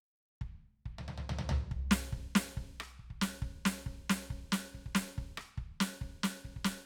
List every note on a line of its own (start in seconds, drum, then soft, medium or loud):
0.41 kick soft
0.86 kick soft
0.98 floor tom medium
1.08 floor tom medium
1.18 floor tom medium
1.29 floor tom loud
1.39 floor tom loud
1.49 floor tom loud
1.71 kick medium
1.91 snare loud
2.12 kick medium
2.12 snare soft
2.35 snare loud
2.57 kick soft
2.57 snare soft
2.80 cross-stick medium
2.99 kick soft
3.10 kick soft
3.21 snare loud
3.42 kick medium
3.65 snare loud
3.86 kick soft
3.86 snare soft
4.10 snare loud
4.30 kick soft
4.52 snare loud
4.74 kick soft
4.86 kick soft
4.95 snare loud
5.18 kick soft
5.37 cross-stick medium
5.57 kick soft
5.80 snare loud
6.01 kick soft
6.23 snare loud
6.41 kick soft
6.41 snare soft
6.56 kick soft
6.65 snare loud